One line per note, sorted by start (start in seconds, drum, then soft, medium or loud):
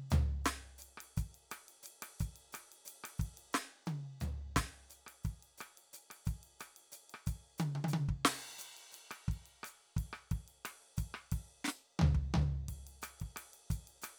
0.11 floor tom loud
0.11 hi-hat pedal medium
0.45 snare loud
0.45 hi-hat pedal soft
0.45 ride soft
0.79 hi-hat pedal medium
0.83 ride soft
0.98 cross-stick medium
0.98 ride soft
1.17 kick medium
1.17 hi-hat pedal medium
1.17 ride soft
1.35 ride soft
1.51 cross-stick medium
1.51 hi-hat pedal soft
1.51 ride medium
1.69 ride soft
1.83 hi-hat pedal medium
1.83 ride soft
2.03 cross-stick medium
2.03 ride medium
2.20 kick medium
2.20 hi-hat pedal medium
2.20 ride soft
2.36 ride soft
2.53 cross-stick medium
2.53 hi-hat pedal medium
2.53 ride medium
2.72 ride soft
2.86 hi-hat pedal medium
2.86 ride medium
3.04 cross-stick medium
3.04 ride medium
3.19 kick medium
3.19 hi-hat pedal soft
3.19 ride soft
3.38 ride soft
3.53 snare medium
3.53 hi-hat pedal medium
3.86 hi-hat pedal soft
3.86 high tom medium
4.21 floor tom medium
4.21 hi-hat pedal medium
4.57 kick medium
4.57 snare loud
4.57 ride medium
4.90 hi-hat pedal soft
4.90 ride soft
5.07 cross-stick soft
5.07 ride soft
5.24 kick soft
5.24 hi-hat pedal soft
5.24 ride soft
5.43 ride soft
5.58 cross-stick medium
5.58 hi-hat pedal soft
5.58 ride soft
5.78 ride soft
5.94 hi-hat pedal medium
5.94 ride soft
6.11 cross-stick soft
6.11 ride soft
6.26 kick medium
6.26 hi-hat pedal soft
6.26 ride soft
6.44 ride soft
6.60 cross-stick medium
6.60 hi-hat pedal soft
6.60 ride soft
6.77 ride soft
6.92 hi-hat pedal medium
6.92 ride soft
7.10 ride soft
7.15 cross-stick medium
7.27 kick medium
7.27 hi-hat pedal medium
7.27 ride soft
7.58 hi-hat pedal medium
7.58 high tom medium
7.76 high tom medium
7.85 high tom medium
7.89 hi-hat pedal medium
7.94 high tom medium
8.09 kick medium
8.25 snare loud
8.25 crash medium
8.59 hi-hat pedal medium
8.59 ride soft
8.77 ride soft
8.92 hi-hat pedal soft
8.92 ride soft
9.11 cross-stick medium
9.11 ride soft
9.28 kick medium
9.28 ride soft
9.46 ride soft
9.64 cross-stick medium
9.64 hi-hat pedal medium
9.64 ride soft
9.97 kick medium
9.97 ride soft
10.13 cross-stick medium
10.32 kick medium
10.32 ride soft
10.48 ride soft
10.65 cross-stick medium
10.65 hi-hat pedal soft
10.65 ride medium
10.97 kick medium
10.97 hi-hat pedal medium
10.97 ride soft
11.15 cross-stick medium
11.32 kick medium
11.32 hi-hat pedal soft
11.32 ride medium
11.65 snare medium
11.68 snare medium
12.00 floor tom loud
12.00 high tom loud
12.15 kick medium
12.34 floor tom loud
12.34 high tom loud
12.69 kick soft
12.69 ride soft
12.87 ride soft
13.02 cross-stick medium
13.02 hi-hat pedal medium
13.02 ride soft
13.21 kick soft
13.21 ride soft
13.37 cross-stick medium
13.37 ride medium
13.54 ride soft
13.71 kick medium
13.71 hi-hat pedal medium
13.71 ride soft
13.88 ride soft
14.02 cross-stick medium
14.02 hi-hat pedal medium
14.02 ride medium